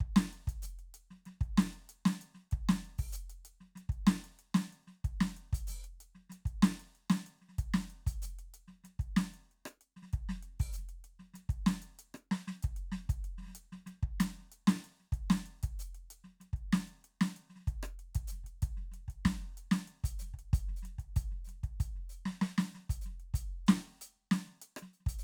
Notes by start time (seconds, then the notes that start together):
0.01 kick, closed hi-hat
0.17 snare
0.34 closed hi-hat
0.48 kick, open hi-hat
0.63 snare, hi-hat pedal
0.80 closed hi-hat
0.95 closed hi-hat
1.11 snare
1.26 snare, closed hi-hat
1.41 kick, closed hi-hat
1.58 snare
1.74 closed hi-hat
1.90 closed hi-hat
2.06 snare
2.22 closed hi-hat
2.35 snare
2.52 kick, closed hi-hat
2.69 snare
2.85 closed hi-hat
2.90 snare
2.99 open hi-hat, kick
3.13 hi-hat pedal
3.30 closed hi-hat
3.46 closed hi-hat
3.61 snare
3.76 snare, closed hi-hat
3.90 kick, closed hi-hat
4.07 snare
4.25 closed hi-hat
4.40 closed hi-hat
4.55 snare
4.73 closed hi-hat
4.88 snare
5.05 kick, closed hi-hat
5.21 snare
5.37 closed hi-hat
5.53 open hi-hat, kick
5.68 snare, hi-hat pedal
5.85 closed hi-hat
6.01 closed hi-hat
6.16 snare
6.30 snare, closed hi-hat
6.46 kick, closed hi-hat
6.63 snare
6.80 closed hi-hat
6.96 closed hi-hat
7.11 snare
7.27 closed hi-hat
7.42 snare
7.49 snare
7.53 snare
7.59 kick, closed hi-hat
7.74 snare
7.91 closed hi-hat
8.07 open hi-hat, kick
8.23 snare, hi-hat pedal
8.39 closed hi-hat
8.55 closed hi-hat
8.68 snare
8.84 snare, closed hi-hat
9.00 kick, closed hi-hat
9.17 snare
9.34 closed hi-hat
9.52 closed hi-hat
9.66 cross-stick
9.82 closed hi-hat
9.97 snare
10.03 snare
10.14 kick, closed hi-hat
10.30 snare
10.43 closed hi-hat
10.60 open hi-hat, kick
10.74 hi-hat pedal
10.79 snare
10.90 closed hi-hat
11.05 closed hi-hat
11.20 snare
11.34 snare, closed hi-hat
11.50 kick, closed hi-hat
11.67 snare
11.71 cross-stick
11.83 closed hi-hat
12.00 closed hi-hat
12.15 cross-stick
12.32 snare
12.48 snare
12.63 kick, closed hi-hat
12.77 closed hi-hat
12.92 snare
13.10 kick, closed hi-hat
13.25 closed hi-hat
13.39 snare
13.43 snare
13.46 snare
13.47 snare
13.49 snare
13.56 closed hi-hat
13.73 snare
13.87 snare, closed hi-hat
14.03 kick
14.21 snare, closed hi-hat
14.39 snare
14.52 closed hi-hat
14.68 snare
14.85 closed hi-hat
15.01 snare
15.13 kick, closed hi-hat
15.31 snare
15.46 closed hi-hat
15.64 kick, open hi-hat
15.80 hi-hat pedal
15.95 closed hi-hat
16.11 closed hi-hat
16.25 snare
16.41 snare, closed hi-hat
16.54 kick, closed hi-hat
16.73 snare
16.88 closed hi-hat
17.05 closed hi-hat
17.22 snare
17.37 closed hi-hat
17.50 snare
17.56 snare
17.61 snare
17.68 kick, closed hi-hat
17.84 cross-stick
18.00 closed hi-hat
18.16 kick, open hi-hat
18.28 hi-hat pedal
18.32 snare
18.44 kick, closed hi-hat
18.63 kick, closed hi-hat
18.77 snare
18.92 snare, closed hi-hat
19.09 kick, closed hi-hat
19.26 kick, snare
19.42 snare
19.58 closed hi-hat
19.72 snare
19.88 closed hi-hat
20.04 open hi-hat, kick
20.20 snare, hi-hat pedal
20.34 kick
20.40 closed hi-hat
20.54 open hi-hat, kick
20.69 snare
20.77 hi-hat pedal
20.83 snare, closed hi-hat
20.99 kick, closed hi-hat
21.17 open hi-hat, kick
21.32 snare
21.45 snare, hi-hat pedal
21.50 closed hi-hat
21.64 kick, closed hi-hat
21.81 open hi-hat, kick
21.96 snare
22.10 closed hi-hat, hi-hat pedal
22.26 snare
22.42 snare
22.59 snare
22.75 snare
22.90 open hi-hat, kick
23.02 hi-hat pedal
23.06 snare
23.21 closed hi-hat
23.35 open hi-hat, kick
23.67 snare, hi-hat pedal
23.83 snare
24.02 closed hi-hat
24.32 snare
24.47 snare
24.62 closed hi-hat
24.77 cross-stick
24.83 snare
24.94 closed hi-hat
25.01 snare
25.07 open hi-hat, kick
25.19 hi-hat pedal